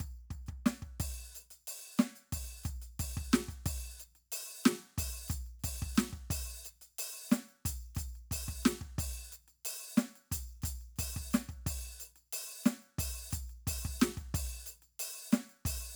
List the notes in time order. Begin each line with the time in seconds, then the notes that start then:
0.00 kick, percussion
0.30 kick, percussion
0.46 kick, percussion
0.66 snare, percussion
0.82 kick, percussion
1.00 kick, percussion
1.35 percussion
1.50 percussion
1.67 percussion
1.98 snare, percussion
2.00 percussion
2.15 percussion
2.32 kick, percussion
2.64 kick, percussion
2.65 percussion
2.82 percussion
2.99 kick, percussion
3.17 kick
3.33 snare, percussion
3.48 kick, percussion
3.66 kick, percussion
4.00 percussion
4.15 percussion
4.32 percussion
4.64 snare, percussion
4.66 percussion
4.83 percussion
4.98 kick, percussion
5.28 kick, percussion
5.30 percussion
5.46 percussion
5.59 percussion
5.64 kick, percussion
5.82 kick
5.95 snare, percussion
5.98 percussion
6.13 kick, percussion
6.30 kick, percussion
6.65 percussion
6.81 percussion
6.98 percussion
7.29 snare, percussion
7.32 percussion
7.49 percussion
7.65 kick, percussion
7.95 kick, percussion
7.98 percussion
8.15 percussion
8.31 kick, percussion
8.48 kick
8.63 snare, percussion
8.66 percussion
8.81 kick, percussion
8.98 kick, percussion
9.32 percussion
9.48 percussion
9.65 percussion
9.97 snare, percussion
10.15 percussion
10.32 kick, percussion
10.62 kick, percussion
10.65 percussion
10.81 percussion
10.96 kick, percussion
10.99 percussion
11.16 kick
11.31 percussion
11.33 snare, percussion
11.49 kick, percussion
11.66 kick, percussion
12.00 percussion
12.16 percussion
12.33 percussion
12.64 snare, percussion
12.66 percussion
12.82 percussion
12.98 kick, percussion
13.31 percussion
13.33 kick, percussion
13.49 percussion
13.67 kick, percussion
13.85 kick
14.00 snare, percussion
14.02 percussion
14.17 kick, percussion
14.34 kick, percussion
14.66 percussion
14.82 percussion
14.99 percussion
15.31 percussion
15.32 snare, percussion
15.49 percussion
15.65 kick, percussion